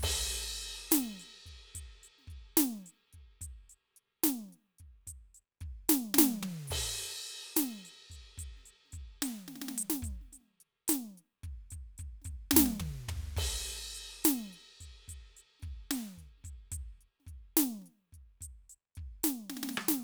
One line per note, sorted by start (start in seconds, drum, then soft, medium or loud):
0.01 kick soft
0.01 hi-hat pedal medium
0.01 crash loud
0.10 kick soft
0.62 closed hi-hat soft
0.92 open hi-hat medium
0.92 snare loud
1.20 closed hi-hat soft
1.20 snare soft
1.46 kick soft
1.46 closed hi-hat soft
1.76 open hi-hat medium
1.76 kick soft
2.04 closed hi-hat soft
2.19 snare soft
2.28 kick soft
2.28 snare soft
2.28 closed hi-hat soft
2.58 closed hi-hat medium
2.58 snare loud
2.87 closed hi-hat soft
3.13 kick soft
3.13 closed hi-hat soft
3.42 closed hi-hat medium
3.42 kick soft
3.70 closed hi-hat soft
3.97 closed hi-hat soft
4.24 closed hi-hat medium
4.24 snare medium
4.24 hi-hat pedal soft
4.49 snare soft
4.49 closed hi-hat soft
4.79 kick soft
4.79 closed hi-hat soft
5.08 closed hi-hat medium
5.08 kick soft
5.35 closed hi-hat soft
5.61 kick soft
5.61 closed hi-hat soft
5.89 closed hi-hat medium
5.89 snare loud
6.15 snare medium
6.19 snare loud
6.43 high tom medium
6.68 kick soft
6.68 hi-hat pedal medium
6.68 crash loud
6.99 closed hi-hat soft
7.27 closed hi-hat soft
7.56 closed hi-hat medium
7.56 snare medium
7.56 hi-hat pedal soft
7.86 closed hi-hat soft
8.11 closed hi-hat soft
8.11 kick soft
8.38 closed hi-hat medium
8.38 kick soft
8.57 snare soft
8.66 closed hi-hat soft
8.86 snare soft
8.91 closed hi-hat soft
8.91 kick soft
8.91 snare soft
9.23 closed hi-hat loud
9.23 snare medium
9.49 snare soft
9.56 snare soft
9.62 snare medium
9.69 snare medium
9.78 closed hi-hat loud
9.90 snare medium
10.03 closed hi-hat medium
10.03 kick soft
10.22 snare soft
10.33 closed hi-hat medium
10.33 snare soft
10.41 snare soft
10.61 closed hi-hat soft
10.89 closed hi-hat loud
10.89 snare medium
11.18 closed hi-hat soft
11.44 kick soft
11.44 closed hi-hat soft
11.71 closed hi-hat medium
11.71 kick soft
11.99 closed hi-hat medium
11.99 kick soft
12.05 kick soft
12.22 closed hi-hat medium
12.22 kick soft
12.22 snare soft
12.31 kick soft
12.52 kick soft
12.52 snare loud
12.57 snare loud
12.66 snare soft
12.80 kick soft
12.80 mid tom medium
12.86 kick soft
12.95 snare soft
13.09 kick soft
13.09 floor tom medium
13.15 kick soft
13.37 kick soft
13.37 crash medium
13.45 kick soft
13.95 closed hi-hat medium
14.25 closed hi-hat loud
14.25 snare loud
14.53 closed hi-hat soft
14.81 closed hi-hat soft
14.81 kick soft
15.09 closed hi-hat medium
15.09 kick soft
15.37 closed hi-hat soft
15.60 kick soft
15.60 snare soft
15.60 closed hi-hat soft
15.69 kick soft
15.91 closed hi-hat medium
15.91 snare medium
16.18 kick soft
16.18 closed hi-hat soft
16.38 snare soft
16.45 closed hi-hat soft
16.45 kick soft
16.72 closed hi-hat medium
16.72 kick soft
16.78 kick soft
17.01 closed hi-hat soft
17.21 snare soft
17.26 kick soft
17.26 snare soft
17.26 closed hi-hat soft
17.57 closed hi-hat medium
17.57 snare loud
17.82 snare soft
17.82 closed hi-hat soft
18.13 kick soft
18.13 closed hi-hat soft
18.41 closed hi-hat medium
18.41 kick soft
18.70 closed hi-hat soft
18.96 kick soft
18.96 closed hi-hat soft
19.24 closed hi-hat loud
19.24 snare medium
19.50 snare medium
19.57 snare soft
19.64 snare medium
19.70 snare medium
19.70 hi-hat pedal medium
19.78 cross-stick loud
19.89 snare medium